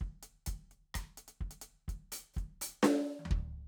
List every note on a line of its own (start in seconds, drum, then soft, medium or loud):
0.01 kick soft
0.23 closed hi-hat medium
0.46 kick soft
0.46 closed hi-hat loud
0.71 closed hi-hat soft
0.95 kick soft
0.95 cross-stick medium
0.95 closed hi-hat medium
1.18 closed hi-hat medium
1.28 closed hi-hat medium
1.41 kick soft
1.51 closed hi-hat medium
1.62 closed hi-hat medium
1.88 kick soft
1.88 closed hi-hat medium
2.12 open hi-hat loud
2.34 kick medium
2.34 hi-hat pedal soft
2.38 closed hi-hat soft
2.62 open hi-hat loud
2.83 snare loud
2.83 hi-hat pedal medium
3.19 high tom soft
3.25 floor tom medium
3.31 kick medium